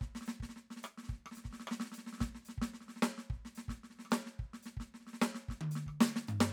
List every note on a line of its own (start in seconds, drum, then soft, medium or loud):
0.01 kick soft
0.01 snare soft
0.07 kick soft
0.15 snare soft
0.21 snare soft
0.26 snare medium
0.26 hi-hat pedal soft
0.40 kick soft
0.40 snare soft
0.45 kick soft
0.45 snare soft
0.56 snare soft
0.70 snare soft
0.76 snare soft
0.82 cross-stick medium
0.82 snare soft
0.82 hi-hat pedal soft
0.98 snare soft
1.03 snare soft
1.07 kick soft
1.07 snare soft
1.12 snare soft
1.26 cross-stick medium
1.31 snare soft
1.31 hi-hat pedal soft
1.37 snare soft
1.44 kick soft
1.44 snare soft
1.50 snare soft
1.53 snare soft
1.60 snare soft
1.67 cross-stick medium
1.67 snare medium
1.80 snare medium
1.85 snare soft
1.92 snare soft
1.92 hi-hat pedal soft
1.98 snare soft
2.04 snare soft
2.06 snare soft
2.13 snare soft
2.18 snare soft
2.20 kick soft
2.20 snare medium
2.27 kick soft
2.35 snare soft
2.41 snare soft
2.45 snare soft
2.45 hi-hat pedal soft
2.58 kick soft
2.58 snare medium
2.63 kick soft
2.74 snare soft
2.81 snare soft
2.86 snare soft
2.88 snare soft
2.96 snare soft
3.02 snare medium
3.02 hi-hat pedal soft
3.18 snare soft
3.30 kick soft
3.30 snare soft
3.36 kick soft
3.45 snare soft
3.55 snare soft
3.55 hi-hat pedal soft
3.68 kick soft
3.68 snare soft
3.74 kick soft
3.83 snare soft
3.90 snare soft
3.95 snare soft
3.99 snare soft
4.05 cross-stick soft
4.10 snare soft
4.10 hi-hat pedal soft
4.12 snare medium
4.26 snare soft
4.39 kick soft
4.39 snare soft
4.45 kick soft
4.53 snare soft
4.63 snare soft
4.63 hi-hat pedal soft
4.77 kick soft
4.77 snare soft
4.94 snare soft
5.00 snare soft
5.05 snare soft
5.07 snare soft
5.13 snare soft
5.21 snare loud
5.21 hi-hat pedal soft
5.35 snare soft
5.49 kick soft
5.49 snare soft
5.61 high tom loud
5.71 hi-hat pedal medium
5.75 snare soft
5.86 kick soft
5.86 cross-stick soft
6.01 snare loud
6.16 snare medium
6.27 floor tom medium
6.27 hi-hat pedal soft
6.40 snare loud